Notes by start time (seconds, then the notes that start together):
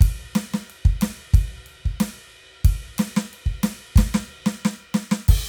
0.01 kick, ride
0.36 snare, ride
0.54 snare
0.70 ride
0.85 kick
1.01 snare, ride
1.34 kick, ride
1.66 ride
1.86 kick
2.00 snare, ride
2.65 kick, ride
2.99 snare, ride
3.17 snare
3.33 ride
3.46 kick
3.64 snare, ride
3.96 kick, snare, ride
4.15 snare
4.46 snare
4.65 snare
4.95 snare
5.12 snare
5.29 kick, crash